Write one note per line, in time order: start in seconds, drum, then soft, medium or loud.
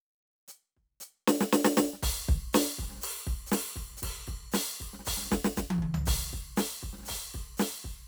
0.48 hi-hat pedal medium
0.77 kick soft
1.00 hi-hat pedal loud
1.28 snare loud
1.41 snare loud
1.53 snare loud
1.65 snare loud
1.77 kick soft
1.77 snare loud
1.93 snare soft
2.03 kick medium
2.03 crash loud
2.28 kick loud
2.53 snare loud
2.53 hi-hat pedal loud
2.53 crash loud
2.78 kick medium
2.78 snare soft
2.78 crash soft
2.86 snare soft
2.89 snare soft
2.92 snare soft
2.94 snare soft
2.96 snare soft
2.98 snare soft
2.98 hi-hat pedal medium
3.03 snare soft
3.03 crash loud
3.27 kick medium
3.27 crash soft
3.47 hi-hat pedal medium
3.52 snare loud
3.52 crash loud
3.76 kick medium
3.76 crash soft
3.87 snare soft
3.90 snare soft
3.97 snare soft
3.97 hi-hat pedal medium
4.01 kick medium
4.01 snare soft
4.01 crash loud
4.27 kick medium
4.27 crash medium
4.52 snare loud
4.52 hi-hat pedal medium
4.52 crash loud
4.80 kick soft
4.80 crash medium
4.93 snare soft
4.99 snare soft
5.05 kick medium
5.05 hi-hat pedal medium
5.05 crash loud
5.17 snare soft
5.21 snare soft
5.25 snare soft
5.31 kick medium
5.31 snare loud
5.44 snare loud
5.56 kick medium
5.56 snare loud
5.56 hi-hat pedal medium
5.70 high tom loud
5.78 kick medium
5.82 mid tom medium
5.94 floor tom loud
6.06 kick loud
6.06 hi-hat pedal medium
6.06 crash loud
6.30 kick medium
6.30 crash soft
6.56 kick soft
6.56 snare loud
6.56 hi-hat pedal medium
6.56 crash loud
6.82 kick medium
6.82 crash soft
6.93 snare soft
6.98 snare soft
7.02 snare soft
7.02 hi-hat pedal medium
7.06 snare soft
7.06 crash loud
7.08 kick soft
7.08 snare soft
7.11 snare soft
7.34 kick medium
7.34 crash medium
7.57 snare loud
7.57 hi-hat pedal medium
7.57 crash medium
7.84 kick medium
7.84 crash soft